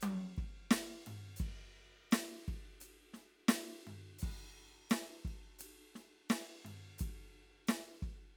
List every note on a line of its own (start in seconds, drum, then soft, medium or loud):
0.01 hi-hat pedal medium
0.01 high tom loud
0.01 ride soft
0.37 kick soft
0.37 ride soft
0.71 snare loud
0.71 hi-hat pedal medium
0.71 ride soft
1.07 floor tom medium
1.07 ride soft
1.36 kick soft
1.36 hi-hat pedal medium
1.36 crash soft
2.11 snare loud
2.11 hi-hat pedal medium
2.11 ride medium
2.48 kick soft
2.48 ride soft
2.81 hi-hat pedal medium
2.81 ride soft
3.14 snare soft
3.14 ride soft
3.49 snare loud
3.49 hi-hat pedal medium
3.49 ride medium
3.87 floor tom soft
3.87 ride soft
4.19 hi-hat pedal medium
4.19 crash soft
4.23 kick soft
4.90 snare loud
4.90 hi-hat pedal medium
4.90 ride medium
5.25 kick soft
5.25 ride soft
5.59 hi-hat pedal medium
5.59 ride medium
5.95 snare soft
5.95 ride soft
6.30 snare loud
6.30 hi-hat pedal medium
6.30 ride soft
6.65 floor tom soft
6.65 ride soft
6.99 kick soft
6.99 hi-hat pedal medium
6.99 ride medium
7.68 snare loud
7.68 hi-hat pedal medium
7.68 ride soft
8.03 kick soft